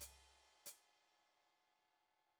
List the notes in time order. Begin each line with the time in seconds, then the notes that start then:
0.01 hi-hat pedal, crash
0.66 hi-hat pedal